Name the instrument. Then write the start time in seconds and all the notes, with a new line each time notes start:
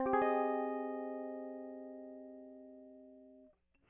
electric guitar
0.00 C4
0.06 G4
0.14 G#4